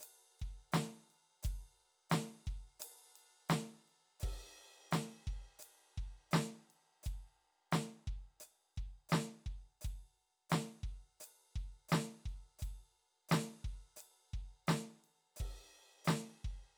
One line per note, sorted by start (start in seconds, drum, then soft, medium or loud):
0.00 hi-hat pedal medium
0.00 ride medium
0.40 kick soft
0.40 ride soft
0.73 snare medium
0.73 hi-hat pedal medium
0.73 ride medium
0.82 snare soft
1.11 ride soft
1.43 kick medium
1.43 hi-hat pedal medium
1.43 ride medium
1.76 ride soft
2.10 snare loud
2.10 hi-hat pedal medium
2.10 ride medium
2.47 kick soft
2.47 ride soft
2.80 hi-hat pedal medium
2.80 ride medium
3.16 ride soft
3.49 snare loud
3.49 hi-hat pedal medium
3.49 ride medium
3.88 ride soft
4.20 kick medium
4.20 hi-hat pedal medium
4.20 crash soft
4.92 snare medium
4.92 hi-hat pedal medium
4.92 ride medium
5.27 kick soft
5.59 hi-hat pedal medium
5.59 ride medium
5.98 kick soft
6.32 snare loud
6.32 hi-hat pedal medium
6.32 ride soft
6.71 ride soft
7.03 kick soft
7.03 hi-hat pedal medium
7.03 ride soft
7.72 snare medium
7.72 hi-hat pedal medium
7.72 ride soft
8.08 kick soft
8.41 hi-hat pedal medium
8.41 ride soft
8.77 kick soft
8.77 ride soft
9.09 snare loud
9.09 hi-hat pedal medium
9.09 ride soft
9.47 kick soft
9.82 kick soft
9.82 hi-hat pedal medium
9.82 ride soft
10.50 snare medium
10.50 hi-hat pedal medium
10.50 ride medium
10.84 kick soft
11.21 hi-hat pedal medium
11.25 ride medium
11.56 kick soft
11.56 ride soft
11.89 snare loud
11.89 hi-hat pedal medium
11.89 ride medium
12.26 kick soft
12.26 ride soft
12.59 kick soft
12.59 hi-hat pedal medium
12.63 ride soft
13.29 snare loud
13.29 hi-hat pedal medium
13.29 ride medium
13.65 kick soft
13.97 hi-hat pedal medium
14.01 ride soft
14.34 kick soft
14.68 snare loud
14.68 hi-hat pedal medium
14.68 ride soft
15.04 ride soft
15.37 kick soft
15.37 hi-hat pedal medium
15.37 crash soft
16.05 snare loud
16.05 hi-hat pedal medium
16.09 ride medium
16.45 kick soft